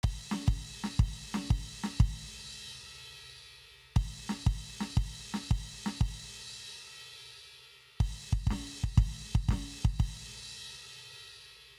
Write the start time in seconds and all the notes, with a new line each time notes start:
0.03 kick, crash
0.31 snare
0.47 kick, crash
0.84 snare
0.99 kick, crash
1.34 snare
1.50 kick, crash
1.84 snare
2.00 kick, crash
3.96 kick, crash
4.29 snare
4.46 kick, crash
4.81 snare
4.97 kick, crash
5.34 snare
5.51 kick, crash
5.86 snare
6.01 kick, crash
8.00 kick, crash
8.33 kick
8.47 kick, snare, crash
8.52 kick
8.84 kick
8.98 kick, crash
9.35 kick
9.49 kick, snare, crash
9.54 kick
9.85 kick
9.99 kick, crash